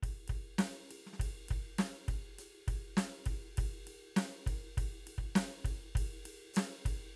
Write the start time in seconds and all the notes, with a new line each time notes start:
0.00 kick, ride
0.28 kick, ride
0.58 snare, hi-hat pedal, ride
0.89 hi-hat pedal, ride
1.06 snare
1.13 snare
1.20 kick, snare, ride
1.49 kick, ride
1.79 snare, ride
2.08 kick, ride
2.39 hi-hat pedal, ride
2.68 kick, ride
2.97 snare, hi-hat pedal, ride
3.26 kick, ride
3.58 kick, ride
3.87 ride
4.17 snare, ride
4.46 kick, ride
4.77 kick, ride
5.07 ride
5.18 kick
5.36 snare, ride
5.65 kick, ride
5.95 kick, ride
6.26 ride
6.54 snare, hi-hat pedal, ride
6.85 kick, ride